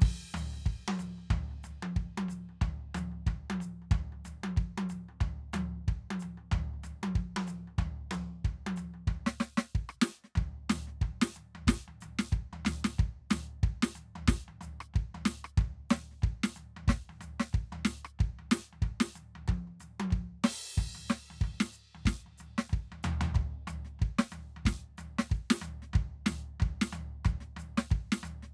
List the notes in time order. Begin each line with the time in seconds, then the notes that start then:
0.01 kick, crash
0.34 floor tom, hi-hat pedal
0.53 high tom
0.66 kick, floor tom
0.88 high tom
0.99 floor tom, hi-hat pedal
1.18 high tom
1.30 kick, floor tom
1.51 high tom
1.64 floor tom, hi-hat pedal
1.83 high tom
1.96 kick, floor tom
2.18 high tom
2.29 floor tom, hi-hat pedal
2.49 high tom
2.62 kick, floor tom
2.81 kick
2.95 floor tom, hi-hat pedal, high tom
3.12 high tom
3.27 kick, floor tom
3.50 high tom
3.60 floor tom, hi-hat pedal
3.82 high tom
3.91 kick, floor tom
4.12 high tom
4.25 floor tom, hi-hat pedal
4.44 high tom
4.57 kick, floor tom
4.78 high tom
4.89 kick, floor tom, hi-hat pedal
5.09 high tom
5.21 kick, floor tom
5.53 floor tom, hi-hat pedal, high tom
5.88 kick, floor tom
6.11 high tom
6.20 kick, floor tom, hi-hat pedal
6.38 high tom
6.52 kick, floor tom
6.74 high tom
6.84 floor tom, hi-hat pedal
7.03 high tom
7.15 kick, floor tom
7.36 high tom
7.47 floor tom, hi-hat pedal
7.68 high tom
7.78 kick, floor tom
8.11 floor tom, hi-hat pedal, high tom
8.45 kick, floor tom
8.67 high tom
8.76 floor tom, hi-hat pedal
8.94 high tom
9.07 kick, floor tom
9.27 snare
9.40 snare, hi-hat pedal
9.58 snare
9.75 kick
9.89 cross-stick
10.02 snare
10.07 hi-hat pedal
10.24 snare
10.36 kick, floor tom
10.70 snare, floor tom, hi-hat pedal
10.87 snare
11.02 kick, floor tom
11.22 snare
11.34 floor tom, hi-hat pedal
11.55 floor tom
11.67 kick, snare
11.88 floor tom
12.01 kick, floor tom, hi-hat pedal
12.19 snare
12.32 kick, floor tom
12.53 floor tom
12.65 snare, floor tom, hi-hat pedal
12.85 snare
12.99 kick, floor tom
13.30 snare, floor tom, hi-hat pedal
13.63 kick, floor tom
13.83 snare
13.95 floor tom, hi-hat pedal
14.16 floor tom
14.28 kick, snare
14.48 floor tom
14.61 floor tom, hi-hat pedal
14.81 cross-stick
14.94 kick, floor tom
15.15 floor tom
15.25 snare, hi-hat pedal
15.45 cross-stick
15.58 kick, floor tom
15.90 snare, floor tom, hi-hat pedal
16.11 snare
16.22 kick, floor tom
16.44 snare
16.54 floor tom, hi-hat pedal
16.77 floor tom
16.88 kick, snare
17.09 floor tom
17.21 kick, floor tom, hi-hat pedal
17.40 snare
17.53 kick, floor tom
17.72 floor tom
17.85 snare, hi-hat pedal
18.05 cross-stick
18.19 kick, floor tom
18.39 floor tom
18.51 snare, hi-hat pedal
18.73 floor tom
18.82 kick, floor tom
19.00 snare
19.14 floor tom, hi-hat pedal
19.35 floor tom
19.48 kick, high tom
19.67 floor tom
19.80 floor tom, hi-hat pedal
20.00 high tom
20.11 kick, floor tom
20.44 snare, hi-hat pedal, crash
20.78 kick, floor tom
20.95 floor tom
21.09 snare, hi-hat pedal
21.30 floor tom
21.41 kick, floor tom
21.60 snare
21.73 hi-hat pedal
21.95 floor tom
22.06 kick, snare
22.26 floor tom
22.38 floor tom, hi-hat pedal
22.58 snare
22.70 kick, floor tom
22.92 floor tom
23.03 floor tom, hi-hat pedal
23.21 floor tom
23.35 kick, floor tom
23.67 cross-stick, floor tom, hi-hat pedal
23.85 snare
23.99 kick, floor tom
24.19 snare
24.31 floor tom, hi-hat pedal
24.56 floor tom
24.66 kick, snare, floor tom, hi-hat pedal
24.98 kick, floor tom, hi-hat pedal
25.19 snare
25.30 kick, floor tom
25.34 hi-hat pedal
25.50 snare
25.62 floor tom, hi-hat pedal
25.82 snare
25.94 kick, floor tom
26.26 snare, floor tom, hi-hat pedal
26.60 kick, floor tom
26.81 snare
26.92 floor tom, hi-hat pedal
27.25 kick, cross-stick, floor tom
27.41 snare
27.57 floor tom, hi-hat pedal
27.78 snare
27.91 kick, floor tom
28.12 snare
28.23 floor tom, hi-hat pedal
28.43 snare